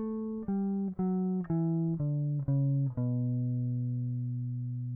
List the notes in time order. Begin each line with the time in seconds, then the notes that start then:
0.00 A3
0.49 G3
1.00 F#3
1.51 E3
2.02 D3
2.50 C#3
2.99 B2